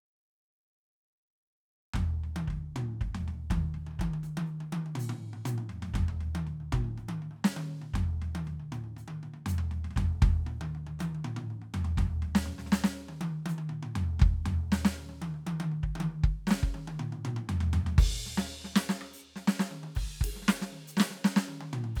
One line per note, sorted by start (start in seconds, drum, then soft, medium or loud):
1.94 kick medium
1.94 floor tom medium
1.96 floor tom loud
2.24 floor tom soft
2.36 high tom loud
2.47 kick medium
2.47 floor tom medium
2.76 mid tom loud
3.01 kick medium
3.01 floor tom medium
3.15 floor tom loud
3.28 floor tom medium
3.50 kick medium
3.50 floor tom loud
3.50 high tom loud
3.74 floor tom soft
3.86 high tom medium
3.91 high tom soft
3.95 kick medium
3.95 high tom soft
4.13 high tom medium
4.23 hi-hat pedal soft
4.23 high tom medium
4.37 high tom loud
4.46 hi-hat pedal soft
4.60 high tom medium
4.72 high tom loud
4.86 high tom medium
4.95 hi-hat pedal medium
4.95 mid tom loud
5.09 mid tom loud
5.33 mid tom medium
5.45 hi-hat pedal medium
5.45 mid tom loud
5.58 mid tom medium
5.69 floor tom medium
5.82 floor tom medium
5.94 kick medium
5.94 floor tom loud
6.08 floor tom soft
6.21 floor tom medium
6.35 high tom loud
6.47 floor tom medium
6.60 high tom soft
6.72 kick medium
6.72 mid tom loud
6.84 high tom soft
6.97 hi-hat pedal soft
6.97 mid tom medium
7.09 high tom loud
7.22 mid tom soft
7.31 high tom soft
7.36 high tom soft
7.44 snare loud
7.44 hi-hat pedal medium
7.56 high tom loud
7.69 mid tom soft
7.81 mid tom medium
7.94 kick medium
7.94 floor tom loud
8.22 floor tom medium
8.35 high tom loud
8.44 floor tom medium
8.44 hi-hat pedal soft
8.60 high tom soft
8.72 hi-hat pedal soft
8.72 mid tom loud
8.84 high tom soft
8.96 hi-hat pedal soft
8.96 mid tom medium
9.08 high tom medium
9.23 mid tom medium
9.34 mid tom soft
9.46 floor tom loud
9.46 hi-hat pedal loud
9.58 floor tom medium
9.64 floor tom soft
9.71 floor tom medium
9.84 floor tom medium
9.91 floor tom medium
9.96 kick medium
9.96 floor tom loud
10.22 kick loud
10.22 floor tom loud
10.46 mid tom medium
10.61 high tom loud
10.75 mid tom soft
10.86 high tom medium
10.99 hi-hat pedal medium
10.99 high tom medium
10.99 high tom loud
11.15 high tom medium
11.24 mid tom loud
11.36 mid tom loud
11.50 mid tom soft
11.61 mid tom soft
11.74 floor tom loud
11.84 floor tom medium
11.97 kick medium
11.97 floor tom loud
12.22 floor tom medium
12.35 snare loud
12.46 floor tom medium
12.58 snare medium
12.66 snare soft
12.72 snare loud
12.72 hi-hat pedal medium
12.84 snare loud
13.08 high tom medium
13.21 high tom loud
13.46 hi-hat pedal medium
13.46 high tom loud
13.58 high tom medium
13.69 mid tom medium
13.83 mid tom medium
13.95 floor tom loud
14.19 kick loud
14.19 floor tom loud
14.46 floor tom loud
14.72 snare loud
14.85 snare loud
14.98 high tom soft
15.09 high tom medium
15.22 high tom loud
15.34 high tom soft
15.47 high tom loud
15.60 high tom loud
15.71 mid tom soft
15.83 kick medium
15.95 high tom loud
16.00 high tom loud
16.24 kick medium
16.47 snare loud
16.51 snare loud
16.63 kick medium
16.74 high tom medium
16.87 high tom loud
16.99 mid tom loud
17.12 mid tom medium
17.25 mid tom loud
17.36 mid tom medium
17.49 floor tom loud
17.60 floor tom loud
17.73 floor tom loud
17.86 floor tom loud
17.98 kick loud
17.98 ride loud
18.26 snare soft
18.37 snare loud
18.64 snare medium
18.73 snare soft
18.76 snare loud
18.89 snare loud
19.01 cross-stick medium
19.13 open hi-hat medium
19.36 snare medium
19.47 snare loud
19.59 snare loud
19.71 high tom medium
19.83 high tom medium
19.95 kick medium
19.95 crash medium
20.21 kick medium
20.21 ride loud
20.36 snare soft
20.42 snare soft
20.48 snare loud
20.61 snare medium
20.72 high tom medium
20.87 hi-hat pedal medium
20.97 snare loud
21.00 snare loud
21.10 snare soft
21.24 snare loud
21.36 snare loud
21.48 high tom medium
21.61 high tom medium
21.73 mid tom loud
21.84 mid tom medium
21.96 kick medium
21.96 crash medium